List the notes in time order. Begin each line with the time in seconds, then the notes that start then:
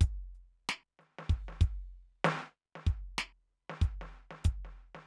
0.01 closed hi-hat, kick
0.35 closed hi-hat
0.69 closed hi-hat, snare
0.99 snare, closed hi-hat
1.19 snare
1.30 kick, closed hi-hat, crash
1.49 snare
1.53 snare
1.61 closed hi-hat, kick
2.25 snare, closed hi-hat
2.76 snare
2.87 kick, closed hi-hat
3.18 closed hi-hat, snare
3.70 snare
3.82 kick, closed hi-hat
4.01 snare
4.13 closed hi-hat
4.31 snare
4.45 closed hi-hat, kick
4.65 snare
4.77 closed hi-hat
4.95 snare